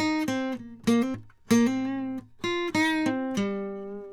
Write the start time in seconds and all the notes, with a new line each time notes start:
0.00 D#4
0.28 C4
0.54 A#3
0.88 A#3
1.03 C4
1.51 A#3
1.68 C4
2.44 F4
2.75 D#4
3.06 C4 F4
3.38 G3